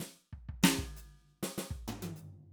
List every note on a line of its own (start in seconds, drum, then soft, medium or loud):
0.00 snare medium
0.33 kick soft
0.49 kick soft
0.63 snare loud
0.63 high tom loud
0.78 kick soft
0.96 hi-hat pedal medium
1.43 snare medium
1.58 snare medium
1.71 kick soft
1.88 floor tom loud
2.02 high tom loud
2.16 hi-hat pedal soft